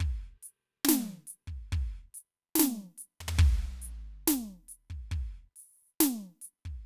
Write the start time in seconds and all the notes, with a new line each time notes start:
0.01 kick
0.43 hi-hat pedal
0.85 snare
0.89 snare
1.28 hi-hat pedal
1.48 kick
1.73 kick
2.15 hi-hat pedal
2.56 snare
2.60 snare
2.98 hi-hat pedal
3.21 floor tom
3.29 floor tom
3.39 kick
3.82 hi-hat pedal
4.28 snare
4.69 hi-hat pedal
4.91 kick
5.12 kick
5.57 hi-hat pedal
6.01 snare
6.42 hi-hat pedal
6.66 kick